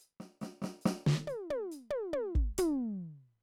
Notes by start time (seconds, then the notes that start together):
0.00 hi-hat pedal
0.20 snare
0.41 snare, hi-hat pedal
0.62 snare
0.64 snare
0.81 hi-hat pedal
0.86 snare
1.07 snare
1.27 hi-hat pedal, high tom
1.50 closed hi-hat, high tom
1.72 hi-hat pedal
1.90 high tom
2.13 high tom
2.35 kick
2.58 open hi-hat, floor tom